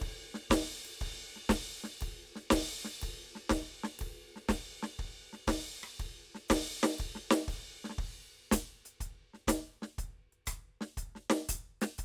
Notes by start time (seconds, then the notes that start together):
0.01 kick, ride
0.34 snare
0.50 kick, snare, hi-hat pedal, ride
0.85 ride
1.01 kick, ride
1.36 snare
1.49 kick, snare, hi-hat pedal, ride
1.84 snare
2.01 kick, ride
2.36 snare
2.51 kick, snare, hi-hat pedal, ride
2.85 snare
3.02 kick, ride
3.35 snare
3.50 kick, snare, hi-hat pedal, ride
3.84 snare
3.99 kick, ride
4.36 snare
4.49 kick, snare, hi-hat pedal, ride
4.83 snare
4.95 hi-hat pedal
4.99 kick, ride
5.33 snare
5.47 kick, snare, hi-hat pedal, ride
5.83 cross-stick
6.00 kick, ride
6.35 snare
6.49 kick, snare, hi-hat pedal, ride
6.72 hi-hat pedal
6.83 snare
6.96 kick, hi-hat pedal, ride
7.15 snare
7.31 snare
7.48 kick, hi-hat pedal, ride
7.84 snare
7.90 snare
7.98 kick, crash
8.34 closed hi-hat
8.52 closed hi-hat, kick, snare
8.85 closed hi-hat
9.01 closed hi-hat, kick
9.34 snare
9.48 closed hi-hat, kick, snare
9.82 snare
9.98 closed hi-hat, kick
10.33 closed hi-hat
10.46 closed hi-hat, kick, cross-stick, hi-hat pedal
10.81 snare
10.97 closed hi-hat, kick
11.15 snare
11.30 snare
11.49 closed hi-hat, kick
11.81 closed hi-hat, snare
11.98 closed hi-hat, kick